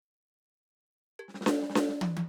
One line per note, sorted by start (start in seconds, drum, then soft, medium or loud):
1.19 percussion loud
1.28 snare soft
1.34 snare medium
1.41 snare medium
1.46 snare loud
1.59 snare soft
1.63 snare medium
1.70 snare medium
1.75 snare loud
1.89 snare medium
2.01 high tom loud
2.17 high tom loud